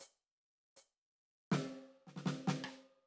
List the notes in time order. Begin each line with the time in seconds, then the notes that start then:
0.00 hi-hat pedal
0.76 hi-hat pedal
1.52 snare
2.07 snare
2.16 snare
2.26 snare
2.47 snare
2.64 cross-stick